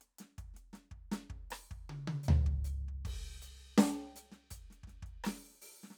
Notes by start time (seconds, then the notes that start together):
0.01 closed hi-hat
0.18 snare, closed hi-hat
0.38 kick, closed hi-hat
0.54 snare, closed hi-hat
0.73 snare, closed hi-hat
0.91 kick
1.12 snare, closed hi-hat
1.30 kick
1.50 cross-stick, open hi-hat
1.71 kick
1.89 high tom
2.08 high tom
2.23 hi-hat pedal
2.28 floor tom
2.46 kick
2.64 hi-hat pedal
2.88 kick
3.05 kick, crash
3.42 closed hi-hat
3.59 closed hi-hat
3.78 open hi-hat, snare
3.86 snare
4.16 open hi-hat, hi-hat pedal
4.32 snare, closed hi-hat
4.50 closed hi-hat, kick
4.70 snare, closed hi-hat
4.83 kick, snare
4.89 closed hi-hat
5.02 kick, closed hi-hat
5.24 open hi-hat, cross-stick, snare
5.62 open hi-hat
5.83 snare
5.90 snare